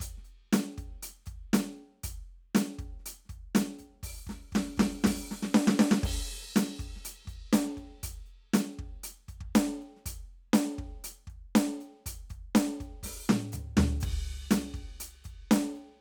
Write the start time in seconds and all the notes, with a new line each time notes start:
0.01 closed hi-hat, kick
0.18 snare
0.25 closed hi-hat
0.54 closed hi-hat, snare
0.79 closed hi-hat, kick
1.03 closed hi-hat
1.27 closed hi-hat, kick
1.54 closed hi-hat, snare
1.60 snare
1.77 closed hi-hat
2.04 closed hi-hat, kick
2.56 closed hi-hat, snare
2.79 closed hi-hat, kick
3.00 snare
3.07 closed hi-hat
3.26 closed hi-hat, kick, snare
3.56 closed hi-hat, snare
3.79 closed hi-hat, kick
4.04 open hi-hat, kick
4.28 open hi-hat, kick, snare
4.53 open hi-hat, kick, snare
4.78 open hi-hat, kick, snare
5.05 open hi-hat, kick, snare
5.32 snare
5.43 snare
5.55 snare
5.68 snare
5.80 snare
5.92 snare
6.04 kick, hi-hat pedal, crash
6.57 closed hi-hat, snare
6.80 closed hi-hat, kick
6.97 snare
7.06 closed hi-hat
7.26 closed hi-hat, kick, snare
7.54 closed hi-hat, snare
7.78 kick, closed hi-hat
8.04 closed hi-hat, kick
8.26 closed hi-hat
8.54 closed hi-hat, snare
8.80 kick
9.04 closed hi-hat
9.29 closed hi-hat, kick
9.41 kick
9.56 closed hi-hat, snare
9.83 closed hi-hat
9.97 snare
10.07 closed hi-hat, kick
10.54 closed hi-hat, snare
10.60 cross-stick
10.79 kick, closed hi-hat
11.05 closed hi-hat
11.28 kick, closed hi-hat
11.56 closed hi-hat, snare
11.81 closed hi-hat
12.07 closed hi-hat, kick
12.31 closed hi-hat, kick
12.56 closed hi-hat, snare
12.81 closed hi-hat, kick
13.04 open hi-hat, kick, snare
13.29 snare, hi-hat pedal, mid tom
13.53 floor tom, hi-hat pedal
13.78 snare, floor tom
14.01 kick, hi-hat pedal, crash
14.52 closed hi-hat, snare
14.75 kick, closed hi-hat
15.01 closed hi-hat
15.25 closed hi-hat, kick
15.52 closed hi-hat, snare
15.57 snare
15.75 closed hi-hat